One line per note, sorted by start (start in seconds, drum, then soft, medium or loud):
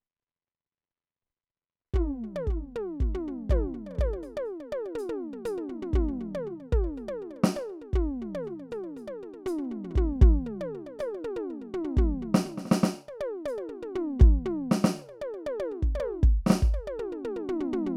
1.93 kick medium
1.93 floor tom medium
1.95 floor tom loud
2.23 floor tom soft
2.35 high tom loud
2.47 kick medium
2.47 floor tom medium
2.75 mid tom loud
3.00 kick medium
3.00 floor tom medium
3.14 floor tom loud
3.27 floor tom medium
3.49 kick medium
3.49 floor tom loud
3.49 high tom loud
3.73 floor tom soft
3.86 high tom medium
3.90 high tom soft
3.94 kick medium
3.94 high tom soft
4.13 high tom medium
4.22 hi-hat pedal soft
4.22 high tom medium
4.36 high tom loud
4.45 hi-hat pedal soft
4.60 high tom medium
4.72 high tom loud
4.85 high tom medium
4.95 hi-hat pedal medium
4.95 mid tom loud
5.09 mid tom loud
5.32 mid tom medium
5.45 hi-hat pedal medium
5.45 mid tom loud
5.57 mid tom medium
5.69 floor tom medium
5.82 floor tom medium
5.93 kick medium
5.93 floor tom loud
6.08 floor tom soft
6.20 floor tom medium
6.34 high tom loud
6.46 floor tom medium
6.59 high tom soft
6.72 kick medium
6.72 mid tom loud
6.83 high tom soft
6.97 hi-hat pedal soft
6.97 mid tom medium
7.08 high tom loud
7.21 mid tom soft
7.30 high tom soft
7.36 high tom soft
7.44 snare loud
7.44 hi-hat pedal medium
7.56 high tom loud
7.69 mid tom soft
7.81 mid tom medium
7.93 kick medium
7.93 floor tom loud
8.21 floor tom medium
8.34 high tom loud
8.44 floor tom medium
8.44 hi-hat pedal soft
8.59 high tom soft
8.71 hi-hat pedal soft
8.71 mid tom loud
8.83 high tom soft
8.96 hi-hat pedal soft
8.96 mid tom medium
9.07 high tom medium
9.22 mid tom medium
9.33 mid tom soft
9.45 floor tom loud
9.45 hi-hat pedal loud
9.58 floor tom medium
9.64 floor tom soft
9.70 floor tom medium
9.84 floor tom medium
9.90 floor tom medium
9.95 kick medium
9.95 floor tom loud
10.21 kick loud
10.21 floor tom loud
10.46 mid tom medium
10.60 high tom loud
10.74 mid tom soft
10.86 high tom medium
10.98 hi-hat pedal medium
10.98 high tom medium
10.98 high tom loud
11.14 high tom medium
11.24 mid tom loud
11.36 mid tom loud
11.49 mid tom soft
11.61 mid tom soft
11.73 floor tom loud
11.84 floor tom medium
11.97 kick medium
11.97 floor tom loud
12.21 floor tom medium
12.34 snare loud
12.45 floor tom medium
12.57 snare medium
12.65 snare soft
12.71 snare loud
12.71 hi-hat pedal medium
12.83 snare loud
13.08 high tom medium
13.20 high tom loud
13.45 hi-hat pedal medium
13.45 high tom loud
13.57 high tom medium
13.68 mid tom medium
13.82 mid tom medium
13.95 floor tom loud
14.19 kick loud
14.19 floor tom loud
14.45 floor tom loud
14.71 snare loud
14.84 snare loud
14.97 high tom soft
15.08 high tom medium
15.21 high tom loud
15.33 high tom soft
15.46 high tom loud
15.59 high tom loud
15.71 mid tom soft
15.82 kick medium
15.95 high tom loud
15.99 high tom loud
16.23 kick medium
16.46 snare loud
16.50 snare loud
16.62 kick medium
16.73 high tom medium
16.87 high tom loud
16.99 mid tom loud
17.12 mid tom medium
17.24 mid tom loud
17.36 mid tom medium
17.48 floor tom loud
17.60 floor tom loud
17.72 floor tom loud
17.86 floor tom loud